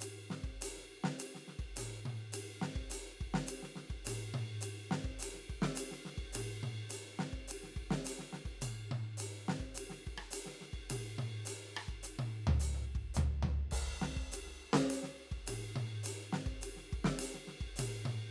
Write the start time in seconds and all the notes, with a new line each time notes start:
0.01 hi-hat pedal, ride
0.30 snare
0.44 kick
0.62 hi-hat pedal, ride
0.77 snare
1.04 snare
1.19 hi-hat pedal, ride
1.35 snare
1.48 snare
1.59 kick
1.76 hi-hat pedal, high tom, ride
2.06 high tom
2.33 hi-hat pedal, ride
2.62 snare
2.76 kick
2.90 hi-hat pedal, ride
3.21 kick
3.34 snare
3.47 hi-hat pedal, ride
3.63 snare
3.76 snare
3.90 kick
4.05 hi-hat pedal, high tom, ride
4.34 high tom
4.61 hi-hat pedal, ride
4.91 snare
5.05 kick
5.19 hi-hat pedal, ride
5.35 snare
5.50 kick
5.62 snare
5.75 hi-hat pedal, ride
5.92 snare
6.05 snare
6.18 kick
6.33 hi-hat pedal, high tom, ride
6.63 high tom
6.90 hi-hat pedal, ride
7.19 snare
7.33 kick
7.48 hi-hat pedal, ride
7.64 snare
7.76 kick
7.91 snare
8.05 hi-hat pedal, ride
8.19 snare
8.33 snare
8.45 kick
8.62 hi-hat pedal, high tom, ride bell
8.92 high tom
9.18 hi-hat pedal, ride
9.49 snare
9.60 kick
9.75 hi-hat pedal, ride
9.90 snare
10.07 kick
10.18 cross-stick
10.31 hi-hat pedal, ride
10.46 snare
10.61 snare
10.73 kick
10.90 hi-hat pedal, high tom, ride
11.19 high tom
11.45 hi-hat pedal, ride
11.77 cross-stick
11.88 kick
12.03 hi-hat pedal, ride
12.19 high tom
12.47 floor tom
12.60 hi-hat pedal, ride
12.75 high tom
12.95 kick
13.15 floor tom, hi-hat pedal
13.43 floor tom
13.72 kick, hi-hat pedal, crash
14.02 snare
14.17 kick
14.32 hi-hat pedal, ride
14.47 snare
14.73 snare
14.90 hi-hat pedal, ride
15.03 snare
15.32 kick
15.47 hi-hat pedal, high tom, ride
15.76 high tom
16.04 hi-hat pedal, ride
16.33 snare
16.46 kick
16.62 hi-hat pedal, ride
16.77 snare
16.93 kick
17.05 snare
17.19 hi-hat pedal, ride
17.34 snare
17.48 snare
17.61 kick
17.76 hi-hat pedal, high tom, ride
18.06 high tom